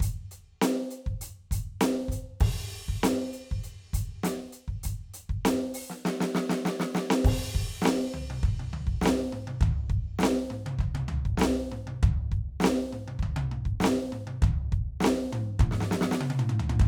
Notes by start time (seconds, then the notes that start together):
0.01 closed hi-hat, kick
0.32 closed hi-hat
0.62 closed hi-hat, snare
0.91 closed hi-hat
1.07 kick
1.22 closed hi-hat
1.51 closed hi-hat, kick
1.81 closed hi-hat, snare
2.09 closed hi-hat, kick
2.37 snare
2.41 kick, crash
2.56 hi-hat pedal
2.70 closed hi-hat
2.89 kick, snare
3.04 closed hi-hat, snare
3.33 closed hi-hat
3.52 kick
3.64 closed hi-hat
3.94 closed hi-hat, kick
4.24 closed hi-hat, snare
4.53 closed hi-hat
4.68 kick
4.84 closed hi-hat, kick
5.14 closed hi-hat
5.30 kick
5.45 closed hi-hat, snare
5.74 open hi-hat
5.90 snare
6.05 snare
6.21 snare
6.35 snare
6.50 snare
6.66 snare
6.80 snare
6.95 snare
7.11 snare
7.25 kick, crash
7.55 kick
7.82 snare
7.86 snare, hi-hat pedal
8.14 floor tom
8.30 high tom
8.43 kick, floor tom
8.60 high tom
8.73 floor tom
8.87 kick
9.02 snare
9.06 snare
9.33 mid tom
9.48 high tom
9.61 kick, floor tom
9.90 kick
10.19 snare
10.24 snare
10.51 mid tom
10.67 high tom
10.79 kick, floor tom
10.95 high tom
11.09 floor tom
11.26 kick
11.38 snare
11.42 snare
11.72 mid tom
11.87 high tom
12.03 kick, floor tom
12.32 kick
12.61 snare
12.64 snare
12.93 mid tom
13.08 high tom
13.19 kick, floor tom
13.37 high tom
13.52 mid tom
13.66 kick
13.81 snare
13.85 snare
14.13 mid tom
14.27 high tom
14.42 kick, floor tom
14.72 kick
15.01 snare
15.05 snare
15.33 mid tom
15.60 kick, mid tom
15.71 snare
15.81 snare
15.92 snare
16.01 snare
16.06 hi-hat pedal
16.12 snare
16.21 high tom
16.30 high tom
16.39 mid tom
16.50 mid tom
16.60 floor tom
16.70 mid tom
16.80 kick, floor tom